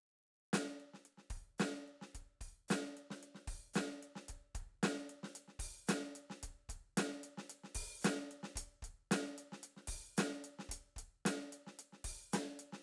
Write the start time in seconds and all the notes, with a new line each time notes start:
0.53 closed hi-hat, snare
0.80 closed hi-hat
0.93 snare
1.05 closed hi-hat
1.17 snare
1.30 kick, open hi-hat
1.58 snare, closed hi-hat, hi-hat pedal
1.87 closed hi-hat
2.01 snare
2.15 kick, closed hi-hat
2.41 kick, open hi-hat
2.68 closed hi-hat, snare, hi-hat pedal
2.97 closed hi-hat
3.10 snare
3.23 closed hi-hat
3.34 snare
3.47 kick, open hi-hat
3.74 snare, closed hi-hat, hi-hat pedal
4.03 closed hi-hat
4.15 snare
4.28 kick, closed hi-hat
4.55 kick, closed hi-hat
4.83 snare, closed hi-hat
5.09 closed hi-hat
5.23 snare
5.35 closed hi-hat
5.48 snare
5.59 kick, open hi-hat
5.87 snare, closed hi-hat, hi-hat pedal
6.15 closed hi-hat
6.30 snare
6.43 kick, closed hi-hat
6.69 kick, closed hi-hat
6.97 snare, closed hi-hat
7.23 closed hi-hat
7.37 snare
7.49 closed hi-hat
7.63 snare
7.75 kick, open hi-hat
8.02 snare, closed hi-hat, hi-hat pedal
8.31 closed hi-hat
8.43 snare
8.55 kick, closed hi-hat
8.82 kick, closed hi-hat
9.11 snare, closed hi-hat
9.38 closed hi-hat
9.52 snare
9.63 closed hi-hat
9.76 snare
9.87 kick, open hi-hat
10.17 snare, closed hi-hat, hi-hat pedal
10.44 closed hi-hat
10.59 snare
10.69 kick, closed hi-hat
10.96 kick, closed hi-hat
11.25 snare, closed hi-hat
11.52 closed hi-hat
11.67 snare
11.79 closed hi-hat
11.92 snare
12.04 kick, open hi-hat
12.32 snare, closed hi-hat, hi-hat pedal
12.59 closed hi-hat
12.72 snare